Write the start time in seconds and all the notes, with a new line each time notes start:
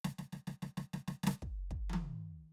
0.05 snare
0.19 snare
0.33 snare
0.48 snare
0.63 snare
0.78 snare
0.94 snare
1.08 snare
1.24 snare
1.27 snare
1.43 kick
1.71 kick
1.90 high tom
1.94 high tom